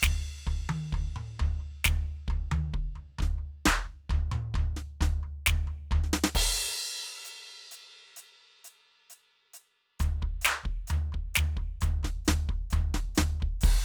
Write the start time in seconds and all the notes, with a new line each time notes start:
0.01 kick, snare, floor tom, hi-hat pedal
0.47 kick, floor tom
0.58 kick
0.69 high tom
0.93 kick, floor tom
1.05 kick
1.16 mid tom
1.40 kick, floor tom
1.60 floor tom
1.84 kick, snare, floor tom, hi-hat pedal
2.28 kick, floor tom
2.37 kick
2.52 floor tom, high tom
2.74 kick, floor tom
2.96 floor tom
3.19 kick, snare, floor tom
3.39 floor tom
3.66 kick, snare, percussion
3.85 floor tom
4.10 kick, floor tom
4.20 kick
4.32 mid tom
4.54 kick, floor tom
4.77 snare
5.01 kick, snare, floor tom
5.23 floor tom
5.46 kick, snare, floor tom
5.67 floor tom
5.91 kick, floor tom
6.02 kick, snare
6.13 snare
6.24 snare
6.35 kick, crash
7.25 hi-hat pedal
7.71 hi-hat pedal
8.16 hi-hat pedal
8.65 hi-hat pedal
9.10 hi-hat pedal
9.54 hi-hat pedal
10.00 kick, snare, floor tom, hi-hat pedal
10.22 kick, floor tom
10.42 snare, hi-hat pedal
10.46 percussion
10.64 kick, floor tom
10.87 floor tom, hi-hat pedal
11.12 kick, floor tom
11.35 snare, floor tom, hi-hat pedal
11.57 kick, floor tom
11.81 kick, floor tom, hi-hat pedal
12.03 kick, snare, floor tom
12.25 kick, snare, floor tom, hi-hat pedal
12.49 kick, floor tom
12.70 kick, floor tom, hi-hat pedal
12.94 kick, snare, floor tom
13.15 snare, floor tom, hi-hat pedal
13.20 kick
13.40 kick, floor tom
13.61 kick, hi-hat pedal, crash